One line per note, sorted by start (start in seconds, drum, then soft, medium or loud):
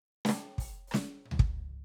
0.25 snare medium
0.29 snare medium
0.59 open hi-hat medium
0.59 kick medium
0.88 cross-stick medium
0.88 hi-hat pedal soft
0.94 snare loud
1.26 high tom soft
1.32 floor tom medium
1.40 kick loud